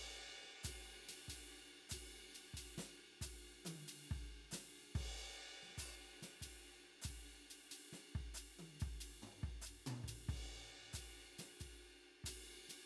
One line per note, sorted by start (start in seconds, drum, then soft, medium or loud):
0.44 snare soft
0.64 kick soft
0.64 hi-hat pedal medium
0.64 ride medium
1.09 snare soft
1.09 ride medium
1.28 kick soft
1.28 ride medium
1.90 kick soft
1.90 hi-hat pedal medium
1.90 ride loud
2.35 ride medium
2.49 hi-hat pedal soft
2.54 kick soft
2.54 ride medium
2.78 snare soft
3.22 kick soft
3.22 hi-hat pedal medium
3.22 ride medium
3.65 high tom medium
3.65 ride medium
3.88 ride medium
4.11 kick soft
4.52 snare soft
4.52 hi-hat pedal medium
4.52 ride medium
4.96 kick soft
4.96 ride medium
5.18 ride soft
5.63 snare soft
5.67 snare soft
5.71 snare soft
5.75 kick soft
5.75 snare soft
5.75 hi-hat pedal medium
5.79 ride medium
6.23 snare soft
6.23 ride medium
6.42 kick soft
6.42 ride medium
7.02 kick soft
7.02 hi-hat pedal medium
7.02 ride medium
7.51 ride medium
7.63 hi-hat pedal soft
7.72 ride medium
7.93 snare soft
8.15 kick soft
8.35 hi-hat pedal medium
8.35 ride medium
8.59 high tom soft
8.80 kick soft
8.80 ride medium
9.01 ride medium
9.23 floor tom soft
9.44 kick soft
9.62 hi-hat pedal medium
9.66 ride medium
9.87 mid tom medium
10.04 kick soft
10.08 ride medium
10.29 kick soft
10.29 ride medium
10.93 kick soft
10.93 hi-hat pedal medium
10.93 ride medium
11.39 snare soft
11.39 ride medium
11.61 kick soft
11.61 ride medium
12.24 kick soft
12.24 hi-hat pedal medium
12.24 ride loud
12.69 snare soft
12.69 ride medium